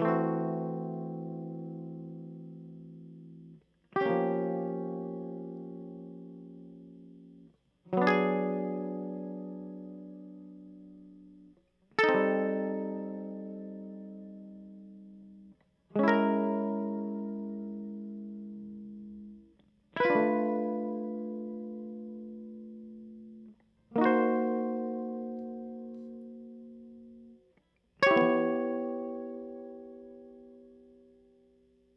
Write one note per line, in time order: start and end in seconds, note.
0.00 3.60 E3
0.00 3.61 A3
0.06 3.58 C4
0.06 3.61 F#4
3.97 7.52 G4
4.02 7.50 C#4
4.06 7.53 A#3
4.11 7.57 F3
7.94 11.57 F#3
7.98 11.61 B3
8.02 11.57 D4
8.08 10.58 G#4
11.99 14.96 A4
12.04 15.57 D#4
12.09 15.59 C4
12.15 15.56 G3
15.97 19.59 G#3
15.97 19.58 C#4
16.04 19.58 E4
16.08 19.45 A#4
19.97 20.35 E4
19.97 23.48 B4
20.05 23.54 F4
20.11 23.49 D4
20.16 23.55 A3
23.97 27.40 A#3
23.97 27.14 D#4
24.02 27.54 F#4
24.02 27.56 C5
28.03 31.97 G4
28.03 31.43 C#5
28.11 31.36 E4
28.17 31.97 B3
28.23 28.88 F3